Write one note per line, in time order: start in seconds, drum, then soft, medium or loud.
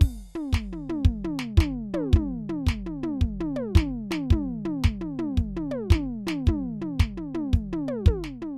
0.01 kick loud
0.01 ride medium
0.34 floor tom loud
0.53 kick loud
0.53 snare loud
0.53 hi-hat pedal medium
0.72 floor tom medium
0.89 floor tom loud
1.05 kick loud
1.24 floor tom loud
1.39 snare loud
1.57 kick loud
1.57 snare loud
1.57 floor tom loud
1.93 floor tom loud
1.93 high tom loud
2.13 kick loud
2.13 floor tom loud
2.48 floor tom loud
2.67 kick loud
2.67 snare loud
2.67 hi-hat pedal soft
2.85 floor tom loud
3.02 floor tom loud
3.21 kick loud
3.40 floor tom loud
3.56 high tom loud
3.75 kick loud
3.75 snare loud
3.75 floor tom loud
4.10 snare loud
4.10 floor tom loud
4.30 kick loud
4.30 hi-hat pedal medium
4.30 floor tom loud
4.64 floor tom loud
4.84 kick loud
4.84 snare loud
5.00 floor tom loud
5.18 floor tom loud
5.37 kick loud
5.37 hi-hat pedal medium
5.56 floor tom loud
5.71 high tom loud
5.90 kick loud
5.90 snare loud
5.90 floor tom loud
6.26 snare loud
6.26 floor tom loud
6.46 kick loud
6.46 floor tom loud
6.46 hi-hat pedal soft
6.81 floor tom loud
6.99 kick loud
6.99 snare loud
7.17 floor tom medium
7.34 floor tom loud
7.53 kick loud
7.53 hi-hat pedal medium
7.72 floor tom loud
7.88 high tom loud
8.06 kick loud
8.06 mid tom loud
8.24 snare medium
8.41 floor tom loud